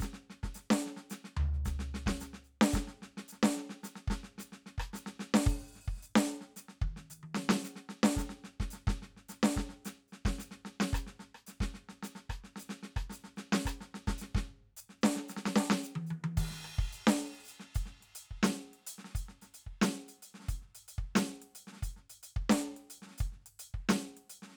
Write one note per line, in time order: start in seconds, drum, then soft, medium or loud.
0.01 kick soft
0.01 snare medium
0.01 hi-hat pedal medium
0.14 snare soft
0.30 snare soft
0.44 kick soft
0.44 snare soft
0.55 snare soft
0.55 hi-hat pedal medium
0.71 snare loud
0.87 snare soft
0.97 snare soft
1.11 snare medium
1.11 hi-hat pedal medium
1.25 snare soft
1.37 floor tom loud
1.54 snare soft
1.66 kick soft
1.66 snare soft
1.66 hi-hat pedal medium
1.80 snare soft
1.95 snare medium
2.07 kick medium
2.07 snare medium
2.21 snare soft
2.21 hi-hat pedal medium
2.34 snare soft
2.45 hi-hat pedal soft
2.62 snare loud
2.73 kick medium
2.73 snare medium
2.73 hi-hat pedal medium
2.88 snare soft
3.03 snare soft
3.18 snare soft
3.29 hi-hat pedal medium
3.33 snare soft
3.44 snare loud
3.57 snare soft
3.70 snare soft
3.84 snare soft
3.84 hi-hat pedal medium
3.96 snare soft
4.08 kick medium
4.08 snare medium
4.24 snare soft
4.39 snare soft
4.39 hi-hat pedal medium
4.53 snare soft
4.67 snare soft
4.79 kick medium
4.79 cross-stick medium
4.94 snare soft
4.94 hi-hat pedal medium
5.07 snare medium
5.20 snare medium
5.35 snare loud
5.47 open hi-hat medium
5.47 kick medium
5.76 snare soft
5.88 kick medium
5.97 snare soft
6.01 snare soft
6.01 hi-hat pedal medium
6.16 snare loud
6.27 snare soft
6.42 snare soft
6.57 snare soft
6.57 hi-hat pedal medium
6.69 snare soft
6.82 kick medium
6.82 high tom soft
6.97 snare soft
7.11 hi-hat pedal medium
7.11 high tom soft
7.24 high tom soft
7.35 snare medium
7.50 snare loud
7.65 snare soft
7.65 hi-hat pedal medium
7.76 snare soft
7.90 snare soft
8.04 snare loud
8.17 kick medium
8.17 snare medium
8.17 hi-hat pedal medium
8.30 snare soft
8.45 snare soft
8.61 kick medium
8.61 snare medium
8.71 snare soft
8.71 hi-hat pedal medium
8.88 kick medium
8.88 snare medium
9.03 snare soft
9.17 snare soft
9.29 snare soft
9.29 hi-hat pedal medium
9.44 snare loud
9.57 kick medium
9.57 snare medium
9.70 snare soft
9.86 snare medium
9.86 hi-hat pedal medium
10.09 hi-hat pedal soft
10.13 snare soft
10.26 kick medium
10.26 snare medium
10.39 snare soft
10.39 hi-hat pedal medium
10.52 snare soft
10.66 snare soft
10.81 snare loud
10.94 kick medium
10.94 cross-stick medium
10.94 hi-hat pedal medium
11.07 snare soft
11.20 snare soft
11.35 cross-stick medium
11.47 snare soft
11.47 hi-hat pedal medium
11.61 kick medium
11.61 snare medium
11.75 snare soft
11.89 snare soft
12.03 snare medium
12.03 hi-hat pedal medium
12.16 snare soft
12.30 kick soft
12.30 cross-stick medium
12.44 snare soft
12.57 snare soft
12.57 hi-hat pedal medium
12.70 snare medium
12.84 snare soft
12.97 kick medium
12.97 cross-stick medium
13.10 snare soft
13.10 hi-hat pedal medium
13.25 snare soft
13.37 snare medium
13.37 hi-hat pedal soft
13.53 snare loud
13.66 kick medium
13.66 cross-stick medium
13.66 hi-hat pedal medium
13.81 snare soft
13.95 snare soft
14.08 kick medium
14.08 snare medium
14.19 snare soft
14.19 hi-hat pedal medium
14.35 kick medium
14.35 snare medium
14.77 hi-hat pedal medium
14.90 snare soft
14.97 snare soft
15.02 snare loud
15.02 hi-hat pedal soft
15.17 snare soft
15.29 snare soft
15.29 hi-hat pedal medium
15.37 snare medium
15.46 snare medium
15.56 snare loud
15.71 snare loud
15.84 hi-hat pedal medium
15.96 high tom medium
16.07 hi-hat pedal soft
16.07 high tom medium
16.25 high tom loud
16.38 kick medium
16.38 hi-hat pedal medium
16.38 crash medium
16.51 snare soft
16.65 cross-stick medium
16.79 kick medium
16.79 closed hi-hat soft
16.93 hi-hat pedal medium
17.08 open hi-hat medium
17.08 snare loud
17.35 open hi-hat soft
17.46 closed hi-hat medium
17.46 hi-hat pedal medium
17.60 snare soft
17.75 closed hi-hat medium
17.75 kick medium
17.86 snare soft
18.01 snare soft
18.01 closed hi-hat soft
18.16 closed hi-hat medium
18.31 kick soft
18.44 closed hi-hat medium
18.44 snare loud
18.74 closed hi-hat soft
18.87 closed hi-hat medium
18.99 snare soft
19.05 snare soft
19.16 closed hi-hat medium
19.16 kick medium
19.29 snare soft
19.42 closed hi-hat soft
19.42 snare soft
19.55 closed hi-hat medium
19.67 kick soft
19.82 closed hi-hat medium
19.82 snare loud
19.96 snare soft
20.09 closed hi-hat soft
20.23 closed hi-hat medium
20.35 snare soft
20.40 snare soft
20.44 snare soft
20.48 closed hi-hat medium
20.48 kick medium
20.48 snare soft
20.62 snare soft
20.69 snare soft
20.75 closed hi-hat medium
20.89 closed hi-hat medium
20.99 kick medium
21.16 closed hi-hat medium
21.16 snare loud
21.30 snare soft
21.42 closed hi-hat soft
21.56 closed hi-hat medium
21.68 snare soft
21.73 snare soft
21.77 snare soft
21.83 closed hi-hat medium
21.83 kick medium
21.97 snare soft
22.10 closed hi-hat medium
22.24 closed hi-hat medium
22.37 kick medium
22.50 closed hi-hat medium
22.50 snare loud
22.77 closed hi-hat soft
22.91 closed hi-hat medium
23.03 snare soft
23.07 snare soft
23.11 snare soft
23.14 snare soft
23.19 closed hi-hat medium
23.19 kick medium
23.33 snare soft
23.37 snare soft
23.41 snare soft
23.47 closed hi-hat medium
23.60 closed hi-hat medium
23.75 kick soft
23.90 closed hi-hat medium
23.90 snare loud
24.17 closed hi-hat soft
24.30 closed hi-hat medium
24.43 snare soft
24.48 snare soft
24.52 snare soft